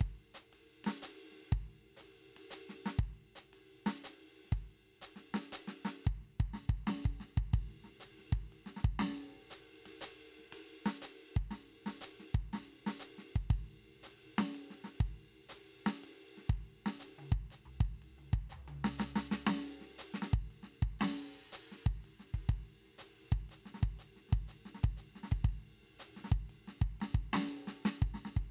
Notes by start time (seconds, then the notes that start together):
0.01 kick, ride
0.34 hi-hat pedal
0.53 ride
0.85 snare, ride
1.03 hi-hat pedal, ride
1.32 snare
1.36 snare
1.38 snare
1.42 snare
1.52 kick, ride
1.97 hi-hat pedal
2.01 ride
2.37 ride
2.51 hi-hat pedal, ride
2.70 snare
2.86 snare
2.99 kick
3.04 ride
3.36 hi-hat pedal
3.53 ride
3.86 snare, ride
4.04 hi-hat pedal, ride
4.45 snare
4.48 snare
4.53 kick, ride
5.02 hi-hat pedal, ride
5.16 snare
5.34 snare, ride
5.53 hi-hat pedal, ride
5.68 snare
5.85 snare, ride
6.05 kick, ride
6.22 snare
6.40 kick
6.54 snare, ride
6.69 kick
6.87 snare, ride
7.05 kick, ride
7.20 snare
7.38 kick
7.54 kick, ride
7.69 snare
7.84 snare
8.00 hi-hat pedal, ride
8.19 snare
8.33 kick, ride
8.53 ride
8.66 snare
8.77 snare
8.85 kick
9.00 snare, ride
9.51 hi-hat pedal, ride
9.86 snare, ride
10.01 hi-hat pedal, ride
10.39 snare
10.42 snare
10.45 snare
10.53 ride
10.86 snare, ride
11.02 hi-hat pedal, ride
11.37 kick
11.51 snare, ride
11.86 snare, ride
12.01 hi-hat pedal, ride
12.20 snare
12.35 kick
12.53 snare, ride
12.87 snare, ride
13.00 hi-hat pedal
13.05 ride
13.18 snare
13.36 kick
13.50 kick, ride
14.03 hi-hat pedal, ride
14.39 snare, ride
14.55 ride
14.71 snare
14.84 snare
15.01 kick, ride
15.49 hi-hat pedal, ride
15.87 snare, ride
16.04 ride
16.38 snare
16.50 kick, ride
16.86 snare, ride
17.00 hi-hat pedal, ride
17.19 high tom
17.32 kick
17.51 hi-hat pedal, ride
17.66 floor tom
17.81 kick
17.85 ride
18.02 ride
18.18 high tom
18.33 kick
18.50 hi-hat pedal, floor tom
18.68 high tom
18.85 snare
18.98 snare, hi-hat pedal
19.16 snare
19.32 snare
19.47 snare, ride
19.81 snare
19.90 snare
19.99 hi-hat pedal, ride
20.14 snare
20.22 snare
20.34 kick, ride
20.51 ride
20.63 snare
20.82 kick
21.00 snare, crash
21.53 hi-hat pedal, ride
21.72 snare
21.86 kick, ride
22.05 ride
22.20 snare
22.34 kick
22.49 kick, ride
22.66 snare
22.86 snare
22.99 hi-hat pedal, ride
23.22 snare
23.32 kick, ride
23.50 hi-hat pedal, ride
23.66 snare
23.74 snare
23.81 kick, snare, ride
23.99 hi-hat pedal, ride
24.17 snare
24.29 kick, snare
24.34 ride
24.48 hi-hat pedal, ride
24.66 snare
24.75 snare
24.84 kick, ride
24.97 hi-hat pedal, ride
25.16 snare
25.24 snare
25.32 kick, ride
25.45 kick
25.49 ride
25.83 snare
26.00 hi-hat pedal, ride
26.17 snare
26.24 snare
26.32 kick, ride
26.50 ride
26.68 snare
26.82 kick
27.01 snare, ride
27.15 kick
27.33 snare, ride
27.53 ride
27.68 snare
27.85 snare
28.02 kick, ride
28.14 snare
28.25 snare
28.37 kick